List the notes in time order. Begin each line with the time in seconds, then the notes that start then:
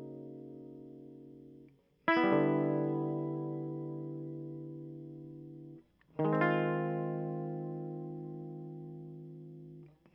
2.08 E4
2.17 B3
2.24 G3
2.33 D3
6.20 D#3
6.25 G#3
6.33 C4
6.42 F4